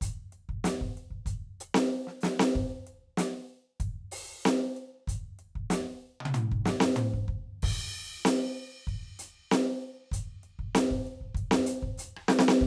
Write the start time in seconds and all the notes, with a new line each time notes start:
0.01 closed hi-hat, kick
0.32 closed hi-hat
0.49 kick
0.64 closed hi-hat, snare
0.81 kick
0.97 closed hi-hat
1.10 kick
1.26 closed hi-hat, kick
1.60 open hi-hat, hi-hat pedal
1.74 snare
1.91 snare
2.07 snare
2.21 snare, hi-hat pedal
2.39 snare
2.55 kick
2.87 closed hi-hat
3.17 closed hi-hat, snare
3.49 closed hi-hat
3.80 kick, closed hi-hat
4.11 open hi-hat
4.45 closed hi-hat, snare, hi-hat pedal
4.76 closed hi-hat
5.07 closed hi-hat, kick
5.39 closed hi-hat
5.55 kick
5.70 open hi-hat, snare, hi-hat pedal
6.20 high tom
6.25 high tom
6.34 hi-hat pedal, mid tom
6.51 kick
6.66 snare
6.80 snare
6.95 hi-hat pedal, mid tom
7.13 kick
7.28 kick
7.61 kick, crash
7.63 kick
8.25 closed hi-hat, snare
8.56 closed hi-hat
8.87 kick, closed hi-hat
9.19 open hi-hat
9.51 snare, closed hi-hat, hi-hat pedal
9.82 closed hi-hat
10.11 closed hi-hat, kick
10.43 closed hi-hat
10.59 kick
10.75 closed hi-hat, snare
10.91 kick
11.07 closed hi-hat
11.21 kick
11.34 kick, closed hi-hat
11.51 snare
11.66 closed hi-hat
11.82 kick
11.98 closed hi-hat, hi-hat pedal
12.17 cross-stick
12.28 snare
12.39 snare
12.48 snare
12.61 kick